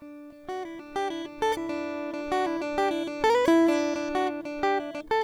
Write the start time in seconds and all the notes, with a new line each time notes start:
0.01 D4
0.50 F#4
0.64 E4
0.81 D4
0.97 G4
1.09 E4
1.27 D4
1.43 A4
1.53 E4
1.71 D4
2.15 D4
2.33 F#4
2.46 E4
2.63 D4
2.79 G4
2.90 E4
3.09 D4
3.24 B3 A#4
3.46 E4
3.70 D4
3.98 D4
4.16 F#4
4.29 E4
4.47 D4
4.64 G4
4.79 E4
4.96 D4
5.12 A4